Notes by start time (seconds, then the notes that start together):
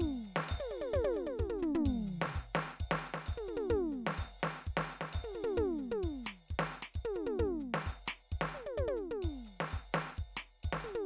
0.01 kick, ride bell
0.07 kick
0.24 hi-hat pedal, ride
0.37 snare
0.49 kick, ride
0.57 kick, high tom
0.70 hi-hat pedal, high tom
0.81 high tom
0.94 kick, high tom
1.05 high tom
1.13 hi-hat pedal, high tom
1.27 high tom
1.39 kick, mid tom
1.46 kick, mid tom
1.59 floor tom, hi-hat pedal
1.75 floor tom
1.86 kick, ride bell
1.93 kick
2.07 hi-hat pedal, ride
2.22 snare
2.33 kick, ride bell
2.54 snare, hi-hat pedal
2.80 kick, ride
2.92 snare
2.99 hi-hat pedal
3.03 ride
3.14 snare
3.27 kick, ride
3.35 kick, mid tom
3.46 hi-hat pedal, mid tom
3.57 mid tom
3.70 kick, mid tom
3.92 hi-hat pedal, mid tom
4.07 snare
4.18 kick, ride bell
4.25 kick
4.39 hi-hat pedal
4.44 snare
4.67 kick, ride bell
4.77 snare
4.87 hi-hat pedal, ride
5.01 snare
5.13 kick, ride
5.21 kick, mid tom
5.34 hi-hat pedal, mid tom
5.44 mid tom
5.57 kick, mid tom
5.79 hi-hat pedal, mid tom
5.92 mid tom
6.03 kick, ride bell
6.10 kick
6.24 snare, hi-hat pedal
6.49 kick, ride bell
6.60 snare
6.69 hi-hat pedal, ride
6.83 snare
6.95 kick, ride bell
7.05 mid tom
7.14 hi-hat pedal, mid tom
7.27 mid tom
7.39 kick, mid tom
7.46 kick, mid tom
7.60 hi-hat pedal
7.74 snare
7.87 kick, ride bell
8.06 snare, hi-hat pedal
8.27 hi-hat pedal
8.32 kick, ride bell
8.42 snare
8.52 hi-hat pedal, high tom
8.66 high tom
8.78 kick, high tom
8.86 kick, high tom
8.97 hi-hat pedal
9.11 mid tom
9.23 kick, ride bell
9.45 hi-hat pedal, ride
9.61 snare
9.71 kick, ride bell
9.93 snare, hi-hat pedal
10.17 kick, ride bell
10.37 snare, hi-hat pedal
10.59 hi-hat pedal
10.64 kick, ride
10.73 kick, snare
10.83 hi-hat pedal, mid tom
10.95 mid tom